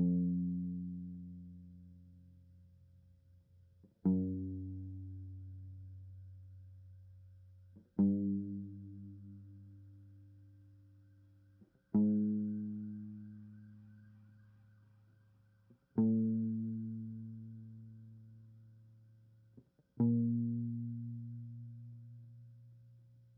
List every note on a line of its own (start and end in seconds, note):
0.00 3.44 F2
4.08 7.80 F#2
8.02 11.60 G2
11.98 15.36 G#2
16.00 19.21 A2
20.02 22.83 A#2